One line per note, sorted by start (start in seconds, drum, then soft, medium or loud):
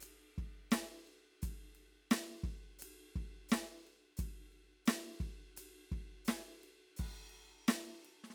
0.01 hi-hat pedal medium
0.01 ride medium
0.39 kick soft
0.39 ride soft
0.72 snare loud
0.72 hi-hat pedal medium
0.72 ride medium
1.08 ride soft
1.42 kick soft
1.42 hi-hat pedal medium
1.42 ride medium
1.76 ride soft
2.11 snare loud
2.11 hi-hat pedal medium
2.11 ride medium
2.44 kick soft
2.44 ride soft
2.79 hi-hat pedal medium
2.79 ride medium
3.15 kick soft
3.15 ride soft
3.49 snare loud
3.49 hi-hat pedal medium
3.49 ride soft
3.87 ride soft
4.17 kick soft
4.17 hi-hat pedal medium
4.17 ride medium
4.53 ride soft
4.86 snare loud
4.86 hi-hat pedal medium
4.86 ride medium
5.21 kick soft
5.21 ride soft
5.57 hi-hat pedal medium
5.57 ride medium
5.92 kick soft
5.92 ride soft
6.25 snare medium
6.25 hi-hat pedal medium
6.25 ride medium
6.64 ride soft
6.97 kick soft
6.97 hi-hat pedal medium
6.97 crash soft
7.30 ride soft
7.69 snare loud
7.69 hi-hat pedal medium
7.69 ride medium
8.05 ride soft
8.24 snare soft
8.31 snare soft